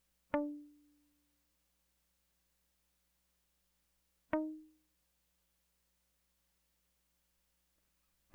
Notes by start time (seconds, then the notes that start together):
0.34 D4
4.33 D#4